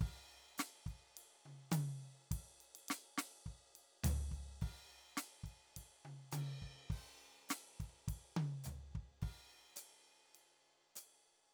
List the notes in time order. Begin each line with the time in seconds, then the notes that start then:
0.01 kick, crash
0.58 snare, hi-hat pedal, ride
0.86 kick, ride
1.17 ride
1.46 high tom
1.72 hi-hat pedal, high tom, ride
2.31 kick, ride
2.61 ride
2.75 ride
2.89 snare, hi-hat pedal, ride
3.18 snare, ride
3.46 kick
3.75 ride
4.04 floor tom, hi-hat pedal, ride
4.32 kick, ride
4.62 kick, crash
5.17 snare, hi-hat pedal, ride
5.44 kick, ride
5.77 kick, ride
6.05 high tom
6.32 hi-hat pedal, high tom, ride
6.62 kick
6.90 kick, crash
7.49 snare, hi-hat pedal, ride
7.80 kick, ride
8.08 kick, ride
8.37 high tom
8.64 floor tom, hi-hat pedal
8.95 kick
9.22 kick, crash
9.76 hi-hat pedal, ride
10.35 ride
10.96 hi-hat pedal, ride